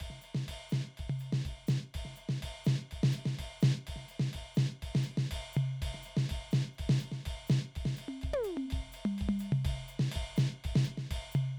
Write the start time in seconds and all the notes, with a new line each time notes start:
0.01 kick, ride bell
0.07 kick
0.11 snare
0.22 hi-hat pedal, ride
0.35 snare
0.49 kick, ride bell
0.70 snare, hi-hat pedal
0.98 kick, ride bell
1.10 floor tom
1.20 hi-hat pedal, ride bell
1.33 snare
1.46 kick, ride bell
1.68 snare, hi-hat pedal
1.95 kick, ride bell
2.06 snare
2.17 hi-hat pedal, ride
2.30 snare
2.43 kick, ride bell
2.65 snare, hi-hat pedal
2.92 kick, ride bell
2.98 kick
3.04 snare
3.13 hi-hat pedal, ride
3.26 snare
3.40 kick, ride bell
3.61 snare, hi-hat pedal
3.88 kick, ride bell
3.97 snare
4.09 hi-hat pedal, ride
4.20 snare
4.34 kick, ride bell
4.41 kick
4.55 snare, hi-hat pedal
4.83 kick, ride bell
4.96 snare
5.03 hi-hat pedal, ride
5.18 snare
5.32 kick, ride bell
5.54 hi-hat pedal
5.58 floor tom
5.83 kick, ride bell
5.89 kick
5.95 snare
6.03 hi-hat pedal, ride
6.18 snare
6.30 kick, ride bell
6.37 kick
6.52 snare, hi-hat pedal
6.74 hi-hat pedal
6.79 kick, ride bell
6.85 kick
6.90 snare
7.00 hi-hat pedal, ride
7.13 snare
7.26 kick, ride
7.33 kick
7.48 snare, hi-hat pedal
7.76 kick, ride bell
7.83 kick, snare
7.97 hi-hat pedal, ride
8.09 high tom
8.22 kick, ride bell
8.30 kick
8.34 high tom
8.44 hi-hat pedal, ride
8.58 high tom
8.71 kick, ride bell
8.79 kick
8.93 hi-hat pedal, ride
9.06 mid tom
9.19 kick, ride bell
9.28 kick, mid tom
9.40 hi-hat pedal, ride
9.53 floor tom
9.66 kick, ride bell
9.73 kick
9.89 hi-hat pedal, ride
10.00 snare
10.11 hi-hat pedal, ride bell
10.17 kick
10.22 kick
10.37 snare, hi-hat pedal
10.65 kick, ride bell
10.72 kick
10.76 snare
10.85 hi-hat pedal
10.98 snare
11.11 kick, ride bell
11.18 kick
11.32 floor tom, hi-hat pedal